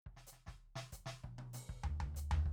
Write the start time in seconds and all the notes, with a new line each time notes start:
0.06 kick
0.16 snare
0.27 hi-hat pedal
0.32 snare
0.46 kick, snare
0.76 snare
0.92 kick, hi-hat pedal
1.06 snare
1.24 kick, high tom
1.38 high tom
1.53 hi-hat pedal, high tom
1.69 kick
1.84 floor tom
2.00 floor tom
2.14 kick, hi-hat pedal
2.31 floor tom
2.46 kick